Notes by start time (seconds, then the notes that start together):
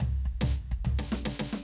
0.00 floor tom
0.25 kick
0.41 snare, floor tom
0.71 kick
0.84 floor tom
0.99 snare
1.12 snare
1.25 snare
1.39 snare
1.53 snare